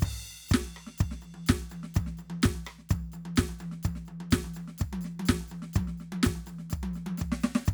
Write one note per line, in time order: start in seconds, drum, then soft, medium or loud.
0.01 kick loud
0.01 crash loud
0.01 percussion medium
0.24 percussion soft
0.49 kick loud
0.49 percussion medium
0.55 snare loud
0.66 high tom medium
0.74 high tom medium
0.74 percussion soft
0.87 snare soft
0.99 kick loud
0.99 high tom medium
0.99 percussion medium
1.12 snare medium
1.22 high tom medium
1.22 percussion soft
1.35 high tom medium
1.47 kick loud
1.47 snare loud
1.47 percussion medium
1.61 high tom medium
1.71 high tom medium
1.71 percussion soft
1.84 snare medium
1.95 kick loud
1.95 high tom loud
1.95 percussion medium
2.07 snare soft
2.18 high tom medium
2.18 percussion soft
2.31 high tom loud
2.43 kick loud
2.43 snare loud
2.43 percussion medium
2.56 high tom medium
2.66 high tom medium
2.66 percussion soft
2.79 snare soft
2.90 kick loud
2.90 high tom medium
2.90 percussion medium
3.13 high tom medium
3.13 percussion soft
3.26 high tom loud
3.37 kick loud
3.37 snare loud
3.37 percussion medium
3.50 high tom medium
3.60 high tom loud
3.60 percussion soft
3.72 snare soft
3.84 kick loud
3.84 high tom loud
3.84 percussion medium
3.96 snare soft
4.06 high tom medium
4.06 percussion soft
4.21 high tom loud
4.32 kick loud
4.32 snare loud
4.32 percussion medium
4.45 high tom medium
4.54 high tom medium
4.54 percussion medium
4.68 snare soft
4.79 kick loud
4.79 snare soft
4.79 percussion medium
4.94 high tom loud
5.02 snare soft
5.02 percussion medium
5.20 high tom loud
5.26 kick loud
5.26 snare loud
5.26 percussion medium
5.41 high tom medium
5.49 high tom medium
5.49 percussion soft
5.63 snare medium
5.74 kick loud
5.74 high tom loud
5.74 percussion medium
5.88 snare soft
5.98 snare soft
5.98 percussion soft
6.13 high tom loud
6.24 kick loud
6.24 snare loud
6.24 percussion medium
6.36 high tom medium
6.47 high tom medium
6.47 percussion medium
6.59 snare soft
6.71 kick loud
6.71 snare soft
6.71 percussion medium
6.84 high tom loud
6.94 snare soft
6.94 percussion soft
7.07 high tom loud
7.18 kick medium
7.18 snare medium
7.18 percussion medium
7.33 snare loud
7.41 snare loud
7.41 percussion soft
7.56 snare loud
7.66 kick loud
7.66 percussion medium